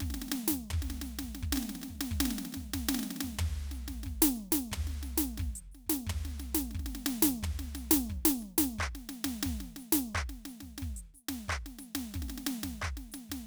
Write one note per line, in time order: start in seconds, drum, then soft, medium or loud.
0.01 kick soft
0.01 snare medium
0.11 snare soft
0.15 snare medium
0.22 snare medium
0.29 snare soft
0.32 snare medium
0.32 hi-hat pedal soft
0.48 kick soft
0.48 snare medium
0.71 kick soft
0.71 floor tom medium
0.83 snare soft
0.91 snare soft
0.98 snare soft
1.02 snare medium
1.02 hi-hat pedal soft
1.19 kick soft
1.19 snare medium
1.35 snare soft
1.43 kick soft
1.53 snare medium
1.56 snare medium
1.63 snare soft
1.70 snare soft
1.70 hi-hat pedal soft
1.76 snare soft
1.82 snare soft
1.84 snare soft
1.89 kick soft
1.89 snare soft
1.96 snare soft
2.01 snare medium
2.12 kick soft
2.21 snare loud
2.26 snare medium
2.31 snare medium
2.39 snare medium
2.39 hi-hat pedal soft
2.46 snare soft
2.53 snare soft
2.55 kick soft
2.55 snare medium
2.61 snare soft
2.68 snare soft
2.74 kick soft
2.74 snare medium
2.89 snare loud
2.95 snare medium
3.00 snare medium
3.00 hi-hat pedal soft
3.04 snare soft
3.11 snare medium
3.17 snare soft
3.24 kick soft
3.24 snare soft
3.35 snare soft
3.39 kick soft
3.39 floor tom loud
3.56 snare soft
3.72 snare soft
3.72 hi-hat pedal soft
3.88 kick soft
3.88 snare medium
4.04 kick soft
4.04 snare soft
4.23 snare loud
4.35 snare soft
4.35 hi-hat pedal soft
4.52 kick soft
4.52 snare medium
4.72 kick soft
4.72 floor tom loud
4.88 snare soft
5.03 snare soft
5.03 hi-hat pedal soft
5.18 kick soft
5.18 snare medium
5.38 kick soft
5.38 snare soft
5.56 closed hi-hat medium
5.72 snare soft
5.72 hi-hat pedal soft
5.87 kick soft
5.87 snare medium
6.00 snare soft
6.07 kick soft
6.07 floor tom loud
6.26 snare soft
6.39 snare soft
6.39 hi-hat pedal soft
6.55 kick soft
6.55 snare medium
6.71 kick soft
6.71 snare soft
6.80 snare soft
6.87 snare soft
6.96 snare soft
7.07 snare medium
7.07 hi-hat pedal medium
7.23 kick soft
7.23 snare loud
7.43 kick soft
7.43 floor tom medium
7.60 snare soft
7.76 snare medium
7.76 hi-hat pedal medium
7.91 kick soft
7.91 snare loud
8.10 kick soft
8.10 snare soft
8.26 snare loud
8.39 hi-hat pedal soft
8.43 snare soft
8.59 kick soft
8.59 snare loud
8.65 snare soft
8.79 kick soft
8.79 percussion medium
8.96 snare soft
9.10 snare medium
9.10 hi-hat pedal soft
9.25 kick soft
9.25 snare medium
9.43 kick soft
9.43 snare medium
9.61 snare soft
9.77 snare soft
9.77 hi-hat pedal soft
9.93 kick soft
9.93 snare loud
10.15 kick soft
10.15 percussion medium
10.30 snare soft
10.46 snare soft
10.46 hi-hat pedal soft
10.61 kick soft
10.61 snare soft
10.79 snare medium
10.83 kick soft
10.97 closed hi-hat medium
11.15 snare soft
11.15 hi-hat pedal soft
11.29 kick soft
11.29 snare medium
11.49 kick soft
11.49 percussion medium
11.67 snare soft
11.79 snare soft
11.79 hi-hat pedal medium
11.96 kick soft
11.96 snare medium
12.15 kick soft
12.15 snare soft
12.23 snare soft
12.29 snare soft
12.38 snare soft
12.46 snare medium
12.46 hi-hat pedal soft
12.64 kick soft
12.64 snare medium
12.82 kick soft
12.82 percussion medium
12.98 snare soft
13.08 snare soft
13.08 hi-hat pedal medium
13.14 snare soft
13.30 kick soft
13.30 snare medium